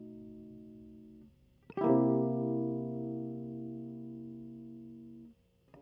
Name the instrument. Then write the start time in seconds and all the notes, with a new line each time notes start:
electric guitar
1.78 E4 G4
1.84 E3 A#3
1.91 C3
1.96 E4